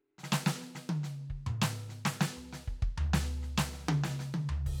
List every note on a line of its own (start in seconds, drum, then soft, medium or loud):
0.18 snare soft
0.23 snare medium
0.32 snare loud
0.46 snare loud
0.61 snare soft
0.75 snare medium
0.89 high tom loud
1.03 snare medium
1.30 kick soft
1.46 mid tom loud
1.62 snare loud
1.89 snare soft
2.05 snare loud
2.21 snare loud
2.36 floor tom soft
2.53 snare medium
2.68 kick soft
2.82 kick medium
2.98 floor tom loud
3.13 snare loud
3.24 snare soft
3.42 snare soft
3.58 snare loud
3.72 snare soft
3.78 snare soft
3.82 snare soft
3.89 high tom loud
4.04 snare loud
4.19 snare medium
4.34 high tom loud
4.49 floor tom loud
4.66 kick soft
4.66 crash soft